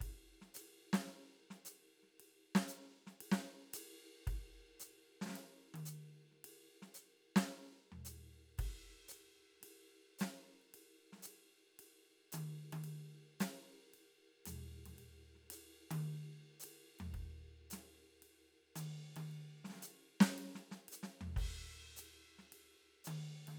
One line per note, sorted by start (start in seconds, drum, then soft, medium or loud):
0.01 kick soft
0.01 ride soft
0.42 snare soft
0.48 snare soft
0.55 hi-hat pedal medium
0.55 ride medium
0.94 snare medium
0.94 ride soft
1.08 snare soft
1.51 snare soft
1.66 hi-hat pedal medium
1.66 ride soft
2.03 snare soft
2.20 ride soft
2.56 snare medium
2.56 ride soft
2.69 hi-hat pedal medium
2.69 ride soft
3.07 snare soft
3.21 ride medium
3.32 snare medium
3.74 hi-hat pedal medium
3.74 ride medium
4.19 crash soft
4.27 kick soft
4.27 ride soft
4.80 hi-hat pedal medium
4.80 ride soft
5.22 snare soft
5.26 snare soft
5.30 snare soft
5.32 snare soft
5.35 snare soft
5.35 ride soft
5.74 high tom medium
5.74 ride soft
5.86 hi-hat pedal medium
5.86 ride soft
6.32 snare soft
6.45 ride medium
6.83 snare soft
6.95 hi-hat pedal medium
6.99 ride soft
7.36 snare loud
7.36 ride soft
7.92 floor tom soft
8.05 hi-hat pedal medium
8.05 ride soft
8.59 kick soft
8.59 ride soft
8.59 crash soft
9.09 hi-hat pedal medium
9.09 ride soft
9.61 snare soft
9.61 ride soft
10.19 snare medium
10.19 hi-hat pedal medium
10.19 ride soft
10.62 ride soft
10.75 ride soft
11.13 snare soft
11.17 snare soft
11.19 snare soft
11.23 hi-hat pedal medium
11.23 ride soft
11.80 ride soft
12.33 hi-hat pedal medium
12.33 high tom medium
12.33 ride medium
12.73 high tom medium
12.73 ride soft
12.84 ride soft
13.41 snare medium
13.41 hi-hat pedal medium
13.41 ride medium
13.94 ride soft
14.46 floor tom soft
14.46 hi-hat pedal medium
14.46 ride medium
14.86 floor tom soft
14.86 ride soft
14.99 ride soft
15.35 snare soft
15.41 snare soft
15.44 snare soft
15.51 hi-hat pedal medium
15.51 ride medium
15.91 high tom medium
15.91 ride medium
16.60 hi-hat pedal medium
16.64 ride medium
16.99 floor tom medium
16.99 ride soft
17.14 kick soft
17.14 ride soft
17.71 snare soft
17.71 hi-hat pedal medium
17.71 ride soft
18.23 ride soft
18.76 hi-hat pedal medium
18.76 high tom medium
18.76 ride soft
19.17 high tom medium
19.17 ride soft
19.32 ride soft
19.65 snare soft
19.70 snare soft
19.73 snare soft
19.76 snare soft
19.80 snare soft
19.80 hi-hat pedal medium
19.80 ride soft
20.21 snare loud
20.39 ride soft
20.56 snare soft
20.72 snare soft
20.89 hi-hat pedal medium
20.89 ride soft
21.03 snare soft
21.21 floor tom medium
21.37 kick soft
21.37 crash soft
21.97 hi-hat pedal medium
21.97 ride soft
22.39 snare soft
22.53 ride soft
23.05 hi-hat pedal medium
23.05 high tom medium
23.05 ride soft
23.48 high tom soft
23.48 ride soft